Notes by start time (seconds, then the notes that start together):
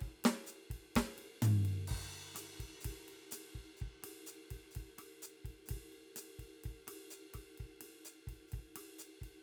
0.01 kick, ride
0.07 kick
0.24 snare, ride
0.47 hi-hat pedal, ride
0.70 kick, ride
0.76 kick
0.96 kick, snare, ride
1.02 kick
1.18 ride
1.42 floor tom, hi-hat pedal, ride
1.65 ride
1.88 kick, crash
1.97 kick
2.35 cross-stick, snare, hi-hat pedal, ride
2.60 kick, ride
2.65 kick
2.81 snare, hi-hat pedal
2.85 kick, ride
2.91 kick
3.08 ride
3.31 snare, hi-hat pedal, ride
3.55 kick, ride
3.61 kick
3.77 hi-hat pedal, ride
3.82 kick, mid tom
3.87 kick
4.03 cross-stick, ride
4.27 hi-hat pedal, ride
4.51 kick, ride
4.56 kick
4.71 hi-hat pedal
4.75 kick, ride
4.82 kick
4.99 cross-stick, ride
5.22 hi-hat pedal, ride
5.45 kick, ride
5.50 kick
5.66 snare, hi-hat pedal, ride
5.71 kick
5.76 kick
5.93 ride
6.16 snare, hi-hat pedal, ride
6.39 kick, ride
6.64 kick, ride
6.71 kick
6.88 cross-stick, ride
7.11 hi-hat pedal, ride
7.33 kick, cross-stick, snare, ride
7.58 kick, ride
7.65 kick
7.81 snare, ride
8.05 hi-hat pedal, ride
8.27 kick, ride
8.33 kick
8.48 hi-hat pedal
8.52 kick, ride
8.59 kick
8.76 cross-stick, snare, ride
8.99 hi-hat pedal, ride
9.22 kick, ride